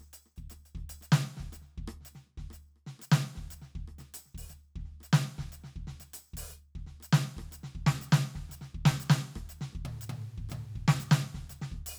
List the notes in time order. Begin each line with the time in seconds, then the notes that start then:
0.01 cross-stick
0.13 percussion
0.26 cross-stick
0.37 kick, percussion
0.50 cross-stick, percussion
0.54 percussion
0.66 percussion
0.75 kick, cross-stick
0.90 percussion
1.02 cross-stick, percussion
1.12 snare
1.27 snare
1.37 kick, snare
1.52 cross-stick, snare, percussion
1.62 snare
1.78 kick, snare
1.88 cross-stick
2.00 snare
2.05 percussion
2.15 snare
2.27 cross-stick
2.38 kick, snare
2.50 cross-stick, snare, percussion
2.76 cross-stick
2.87 snare
2.99 cross-stick, snare, percussion
3.12 snare
3.16 cross-stick
3.24 snare
3.36 kick, snare
3.49 snare, percussion
3.62 snare
3.76 kick, snare
3.88 cross-stick
3.98 cross-stick, snare, percussion
4.14 percussion
4.26 snare
4.35 kick, percussion
4.50 snare, percussion
4.56 percussion
4.76 kick, snare
4.85 snare
4.89 snare
5.01 cross-stick, percussion
5.13 snare
5.19 cross-stick
5.26 snare
5.39 kick, snare
5.51 snare, percussion
5.64 snare
5.76 kick, snare
5.88 snare
5.98 snare, percussion
6.01 snare
6.14 percussion
6.34 kick, percussion
6.50 snare, percussion
6.54 percussion
6.76 kick, snare
7.00 cross-stick, snare, percussion
7.13 snare
7.18 cross-stick
7.26 snare
7.37 kick, cross-stick
7.52 cross-stick, percussion
7.64 snare
7.75 kick, snare
7.87 snare
8.00 cross-stick, percussion
8.13 snare
8.19 snare
8.24 snare
8.35 kick, snare
8.50 snare, percussion
8.62 snare
8.74 kick, cross-stick
8.86 snare
8.98 snare, percussion
9.10 snare
9.15 cross-stick
9.24 snare
9.36 kick, cross-stick
9.48 snare, percussion
9.61 snare
9.73 kick, cross-stick
9.85 high tom
9.97 cross-stick
10.01 percussion
10.10 high tom
10.22 cross-stick
10.38 kick
10.49 cross-stick, high tom, percussion
10.75 kick, snare
10.88 snare
11.00 cross-stick, percussion
11.12 snare
11.25 cross-stick
11.35 kick, snare
11.42 snare
11.50 cross-stick, snare, percussion
11.62 snare
11.72 kick, cross-stick
11.87 percussion
11.95 percussion